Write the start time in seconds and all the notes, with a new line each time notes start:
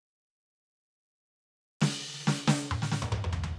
1.81 snare, ride
2.01 snare
2.08 snare
2.14 snare
2.20 snare
2.25 snare
2.27 snare
2.38 snare
2.42 snare
2.48 snare
2.57 snare
2.63 snare
2.68 snare, high tom
2.82 snare
2.92 snare
3.02 open hi-hat, high tom
3.12 mid tom
3.24 mid tom
3.33 floor tom
3.44 floor tom